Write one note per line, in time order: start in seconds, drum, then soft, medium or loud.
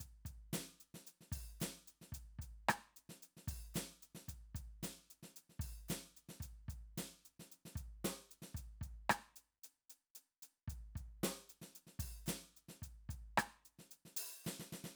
0.00 kick soft
0.00 closed hi-hat medium
0.25 kick soft
0.25 closed hi-hat medium
0.53 snare medium
0.53 closed hi-hat medium
0.58 snare soft
0.80 closed hi-hat soft
0.94 snare soft
1.06 closed hi-hat medium
1.21 snare soft
1.32 kick soft
1.32 open hi-hat medium
1.60 snare medium
1.60 closed hi-hat medium
1.60 hi-hat pedal medium
1.87 closed hi-hat soft
2.01 snare soft
2.12 kick soft
2.12 closed hi-hat medium
2.39 kick soft
2.39 closed hi-hat medium
2.69 cross-stick medium
2.69 closed hi-hat medium
2.96 closed hi-hat soft
3.09 snare soft
3.22 closed hi-hat medium
3.37 snare soft
3.47 kick soft
3.47 open hi-hat medium
3.74 snare medium
3.74 closed hi-hat medium
3.74 hi-hat pedal medium
4.02 closed hi-hat soft
4.15 snare soft
4.28 kick soft
4.28 closed hi-hat medium
4.54 kick soft
4.54 closed hi-hat medium
4.83 snare medium
4.83 closed hi-hat medium
5.10 closed hi-hat soft
5.23 snare soft
5.36 closed hi-hat medium
5.49 snare soft
5.59 kick soft
5.59 open hi-hat medium
5.88 snare medium
5.88 closed hi-hat medium
5.88 hi-hat pedal medium
6.16 closed hi-hat soft
6.29 snare soft
6.40 kick soft
6.40 closed hi-hat medium
6.68 kick soft
6.68 closed hi-hat medium
6.97 snare medium
6.97 closed hi-hat medium
7.25 closed hi-hat soft
7.39 snare soft
7.51 closed hi-hat soft
7.65 snare soft
7.75 kick soft
7.75 closed hi-hat medium
8.04 snare medium
8.04 closed hi-hat medium
8.31 closed hi-hat soft
8.42 snare soft
8.54 kick soft
8.54 closed hi-hat medium
8.81 kick soft
8.81 closed hi-hat soft
9.09 cross-stick medium
9.09 closed hi-hat medium
9.36 closed hi-hat medium
9.63 closed hi-hat medium
9.90 closed hi-hat medium
10.15 closed hi-hat medium
10.42 closed hi-hat medium
10.68 kick soft
10.68 closed hi-hat medium
10.95 kick soft
10.95 closed hi-hat soft
11.23 snare medium
11.23 closed hi-hat medium
11.49 closed hi-hat medium
11.61 snare soft
11.75 closed hi-hat medium
11.87 snare soft
11.99 kick soft
11.99 open hi-hat medium
12.26 snare medium
12.26 closed hi-hat medium
12.26 hi-hat pedal medium
12.56 closed hi-hat soft
12.68 snare soft
12.82 kick soft
12.82 closed hi-hat medium
13.09 kick soft
13.09 closed hi-hat medium
13.37 cross-stick medium
13.37 closed hi-hat medium
13.65 closed hi-hat soft
13.79 snare soft
13.91 closed hi-hat medium
14.05 snare soft
14.16 open hi-hat loud
14.44 snare medium
14.44 hi-hat pedal soft
14.59 snare soft
14.72 snare soft
14.84 snare soft